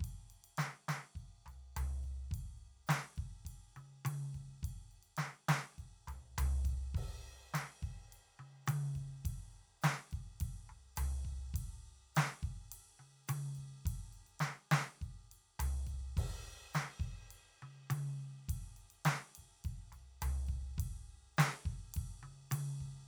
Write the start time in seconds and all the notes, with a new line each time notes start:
0.01 kick, ride
0.30 ride
0.44 ride
0.58 snare, hi-hat pedal, ride
0.89 snare, ride
1.16 kick, ride
1.46 floor tom, ride
1.77 floor tom, hi-hat pedal, ride
2.04 kick, ride
2.31 kick, ride
2.57 ride
2.87 snare, hi-hat pedal, ride
3.17 kick, ride
3.45 kick, ride
3.77 high tom, ride
4.05 hi-hat pedal, high tom, ride
4.35 kick, ride
4.63 kick, ride
4.91 ride
5.03 ride
5.17 snare, hi-hat pedal, ride
5.49 snare, ride
5.78 kick, ride
6.08 floor tom, ride
6.38 floor tom, hi-hat pedal, ride
6.65 kick, ride
6.95 kick, crash
7.54 snare, hi-hat pedal, ride
7.83 kick, ride
8.13 ride
8.39 high tom
8.67 hi-hat pedal, high tom, ride
8.95 kick, ride
9.25 kick, ride
9.51 ride
9.82 snare, hi-hat pedal, ride
10.12 kick, ride
10.41 kick, ride
10.70 floor tom
10.96 floor tom, hi-hat pedal, ride
11.25 kick
11.54 kick, ride
12.15 snare, hi-hat pedal, ride
12.43 kick, ride
12.72 ride
13.00 high tom
13.28 hi-hat pedal, high tom, ride
13.55 kick, ride
13.86 kick, ride
14.13 ride
14.27 ride
14.40 snare, hi-hat pedal, ride
14.72 snare, ride
15.02 kick, ride
15.32 ride
15.60 floor tom, hi-hat pedal, ride
15.87 kick, ride
16.17 kick, crash
16.74 snare, hi-hat pedal, ride
17.00 kick, ride
17.31 ride
17.62 high tom
17.90 hi-hat pedal, high tom, ride
18.49 kick, ride
18.77 ride
18.91 ride
19.05 snare, hi-hat pedal, ride
19.36 kick, ride
19.65 kick, ride
19.92 floor tom, ride
20.22 floor tom, hi-hat pedal, ride
20.47 kick, ride
20.78 kick, ride
21.37 snare, hi-hat pedal, ride
21.66 kick
21.94 kick, ride
22.23 high tom
22.51 hi-hat pedal, high tom, ride
22.81 kick